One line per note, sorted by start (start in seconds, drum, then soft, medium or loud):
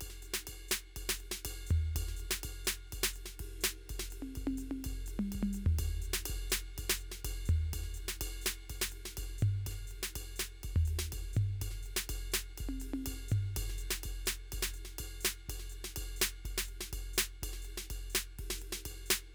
0.01 kick soft
0.01 ride bell medium
0.10 snare soft
0.22 hi-hat pedal medium
0.22 ride soft
0.34 snare medium
0.47 kick soft
0.47 ride bell medium
0.54 kick soft
0.69 snare loud
0.69 hi-hat pedal medium
0.96 kick soft
0.96 ride bell medium
1.09 snare loud
1.17 hi-hat pedal medium
1.17 ride soft
1.32 snare medium
1.45 kick soft
1.45 ride bell medium
1.67 hi-hat pedal medium
1.71 floor tom loud
1.96 kick soft
1.96 ride bell medium
2.02 kick soft
2.09 snare soft
2.17 hi-hat pedal medium
2.17 ride soft
2.31 snare medium
2.44 kick soft
2.44 ride bell medium
2.51 kick soft
2.65 snare loud
2.65 hi-hat pedal medium
2.87 hi-hat pedal soft
2.93 kick soft
2.93 ride bell medium
2.99 kick soft
3.04 snare loud
3.14 hi-hat pedal medium
3.14 ride soft
3.26 snare medium
3.40 kick soft
3.40 ride medium
3.46 kick soft
3.61 snare loud
3.61 hi-hat pedal medium
3.90 kick soft
3.90 ride bell medium
3.96 kick soft
3.96 snare medium
4.10 hi-hat pedal medium
4.10 ride medium
4.22 high tom medium
4.36 kick soft
4.36 ride bell soft
4.43 kick soft
4.47 high tom loud
4.58 hi-hat pedal medium
4.58 ride soft
4.71 high tom loud
4.84 kick soft
4.84 ride bell medium
4.93 kick soft
5.06 hi-hat pedal medium
5.06 ride medium
5.19 mid tom loud
5.32 kick soft
5.32 ride bell medium
5.41 kick soft
5.41 mid tom loud
5.53 hi-hat pedal medium
5.53 ride soft
5.66 floor tom loud
5.79 kick soft
5.79 ride bell medium
5.86 kick soft
6.02 hi-hat pedal medium
6.02 ride soft
6.14 snare medium
6.24 hi-hat pedal soft
6.24 ride bell medium
6.30 kick soft
6.36 kick soft
6.50 snare loud
6.50 hi-hat pedal medium
6.78 kick soft
6.78 ride bell medium
6.85 kick soft
6.90 snare loud
6.98 hi-hat pedal medium
7.12 snare medium
7.25 kick soft
7.25 ride bell medium
7.31 kick soft
7.46 floor tom loud
7.46 hi-hat pedal medium
7.73 kick soft
7.73 ride bell medium
7.80 kick soft
7.80 snare soft
7.94 hi-hat pedal medium
7.94 ride soft
8.08 snare medium
8.21 kick soft
8.21 ride bell medium
8.27 kick soft
8.42 hi-hat pedal medium
8.46 snare loud
8.63 hi-hat pedal soft
8.70 kick soft
8.70 ride bell medium
8.76 kick soft
8.82 snare medium
8.90 hi-hat pedal medium
8.90 ride soft
9.06 snare medium
9.17 kick soft
9.17 ride bell medium
9.24 kick soft
9.39 hi-hat pedal medium
9.43 floor tom loud
9.67 kick soft
9.67 ride bell medium
9.71 kick soft
9.71 snare soft
9.87 hi-hat pedal medium
9.87 ride soft
10.03 snare medium
10.16 kick soft
10.16 ride bell medium
10.22 kick soft
10.36 snare medium
10.36 hi-hat pedal medium
10.64 kick soft
10.64 ride bell medium
10.71 kick soft
10.76 floor tom loud
10.85 hi-hat pedal medium
10.85 ride soft
10.99 snare medium
11.12 kick soft
11.12 ride bell medium
11.19 kick soft
11.33 hi-hat pedal medium
11.33 floor tom loud
11.62 kick soft
11.62 ride bell medium
11.68 kick soft
11.68 snare soft
11.83 hi-hat pedal medium
11.83 ride soft
11.97 snare medium
12.09 kick soft
12.09 ride bell medium
12.16 kick soft
12.32 snare loud
12.32 hi-hat pedal medium
12.58 kick soft
12.58 ride bell medium
12.67 kick soft
12.67 high tom medium
12.80 hi-hat pedal medium
12.80 ride medium
12.94 high tom loud
13.06 kick soft
13.06 ride bell medium
13.14 kick soft
13.29 hi-hat pedal medium
13.29 floor tom loud
13.57 kick soft
13.57 ride bell medium
13.64 kick soft
13.70 snare soft
13.78 hi-hat pedal medium
13.78 ride soft
13.91 snare medium
14.00 hi-hat pedal soft
14.00 ride bell medium
14.06 kick soft
14.11 kick soft
14.26 snare loud
14.26 hi-hat pedal medium
14.48 hi-hat pedal soft
14.52 kick soft
14.52 ride bell medium
14.59 kick soft
14.59 snare medium
14.74 hi-hat pedal medium
14.74 ride soft
14.85 snare soft
14.99 kick soft
14.99 ride bell medium
15.06 kick soft
15.21 hi-hat pedal medium
15.25 snare loud
15.49 kick soft
15.49 ride bell medium
15.55 kick soft
15.60 snare soft
15.70 hi-hat pedal medium
15.70 ride soft
15.84 snare medium
15.96 kick soft
15.96 ride bell medium
16.03 kick soft
16.17 hi-hat pedal medium
16.22 snare loud
16.45 kick soft
16.45 ride bell soft
16.51 kick soft
16.58 snare medium
16.65 hi-hat pedal medium
16.65 ride soft
16.81 snare medium
16.93 kick soft
16.93 ride bell medium
16.99 kick soft
17.14 hi-hat pedal medium
17.18 snare loud
17.43 kick soft
17.43 ride bell medium
17.53 snare soft
17.62 hi-hat pedal medium
17.62 ride soft
17.78 snare medium
17.90 kick soft
17.90 ride bell medium
17.96 kick soft
18.10 hi-hat pedal medium
18.15 snare loud
18.39 kick soft
18.39 ride medium
18.45 kick soft
18.50 snare medium
18.58 hi-hat pedal medium
18.58 ride soft
18.73 snare medium
18.86 kick soft
18.86 ride bell medium
18.91 kick soft
19.06 hi-hat pedal medium
19.10 snare loud